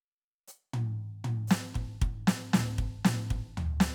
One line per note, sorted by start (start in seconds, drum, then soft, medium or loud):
0.48 hi-hat pedal loud
0.73 mid tom loud
1.24 mid tom loud
1.47 snare loud
1.47 hi-hat pedal medium
1.47 crash soft
1.74 kick medium
1.74 mid tom medium
2.02 kick medium
2.02 mid tom medium
2.27 snare loud
2.27 mid tom medium
2.53 snare loud
2.53 mid tom loud
2.53 floor tom medium
2.59 snare medium
2.78 kick medium
2.78 mid tom soft
3.05 snare loud
3.05 mid tom loud
3.30 kick medium
3.30 mid tom medium
3.57 floor tom loud
3.80 snare loud